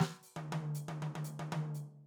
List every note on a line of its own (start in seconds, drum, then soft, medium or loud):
0.00 snare medium
0.23 hi-hat pedal soft
0.36 closed hi-hat soft
0.36 high tom medium
0.52 high tom loud
0.75 hi-hat pedal medium
0.88 closed hi-hat soft
0.88 high tom loud
1.02 high tom medium
1.15 high tom medium
1.24 hi-hat pedal medium
1.39 high tom medium
1.52 high tom loud
1.74 hi-hat pedal soft